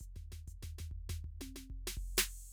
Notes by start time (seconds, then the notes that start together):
0.00 kick, hi-hat pedal
0.16 snare, floor tom
0.32 snare, floor tom
0.48 kick, hi-hat pedal
0.62 snare, floor tom
0.78 snare, floor tom
0.91 kick
1.09 snare, floor tom
1.24 kick
1.41 snare, high tom
1.56 snare, high tom
1.70 kick
1.87 snare, crash
1.97 kick
2.17 snare, crash